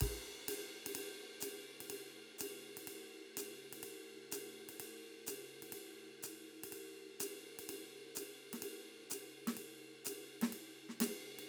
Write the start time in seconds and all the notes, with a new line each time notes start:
0.00 kick, ride, crash
0.48 hi-hat pedal, ride
0.86 ride
0.95 ride
1.40 hi-hat pedal, ride
1.80 ride
1.86 hi-hat pedal, ride
2.38 hi-hat pedal, ride
2.77 ride
2.87 ride
3.37 hi-hat pedal, ride
3.73 ride
3.83 ride
4.31 hi-hat pedal, ride
4.69 ride
4.80 ride
5.26 hi-hat pedal, ride
5.62 ride
5.72 ride
6.23 hi-hat pedal, ride
6.63 ride
6.72 ride
7.20 hi-hat pedal, ride
7.59 ride
7.69 ride
8.15 hi-hat pedal, ride
8.53 snare, ride
8.62 hi-hat pedal, ride
9.10 hi-hat pedal, ride
9.47 snare, ride
9.56 hi-hat pedal, ride
10.05 hi-hat pedal, ride
10.41 snare, ride
10.51 hi-hat pedal, ride
10.89 snare
11.00 snare, hi-hat pedal, ride
11.39 ride